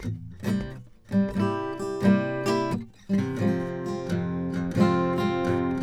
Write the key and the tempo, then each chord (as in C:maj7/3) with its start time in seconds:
F minor, 88 BPM
0.00 G:hdim7(13,11)/6
0.67 C:7/3
3.39 F:min